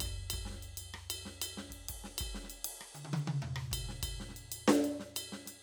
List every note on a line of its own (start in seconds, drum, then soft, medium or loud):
0.01 kick soft
0.01 ride bell loud
0.06 cross-stick soft
0.31 kick soft
0.31 ride bell loud
0.46 snare soft
0.50 snare soft
0.54 snare soft
0.63 ride bell soft
0.78 ride bell medium
0.94 cross-stick medium
1.11 ride bell loud
1.26 snare soft
1.42 hi-hat pedal medium
1.42 ride bell loud
1.58 snare soft
1.70 kick soft
1.70 snare soft
1.70 ride medium
1.89 kick soft
1.89 ride loud
2.04 snare soft
2.19 kick soft
2.19 ride bell loud
2.27 kick soft
2.35 snare soft
2.44 snare soft
2.50 ride bell medium
2.65 ride loud
2.81 cross-stick medium
2.95 hi-hat pedal soft
2.95 high tom soft
3.05 high tom medium
3.14 hi-hat pedal soft
3.14 open hi-hat soft
3.14 high tom loud
3.28 high tom medium
3.43 mid tom medium
3.56 cross-stick medium
3.72 kick soft
3.72 ride bell loud
3.89 snare soft
4.03 kick soft
4.03 ride bell loud
4.09 kick soft
4.20 snare soft
4.29 snare soft
4.37 ride bell soft
4.52 ride bell medium
4.68 snare loud
4.72 hi-hat pedal medium
4.85 ride bell medium
5.00 snare soft
5.16 hi-hat pedal medium
5.16 ride bell loud
5.33 snare soft
5.46 snare soft
5.46 ride bell medium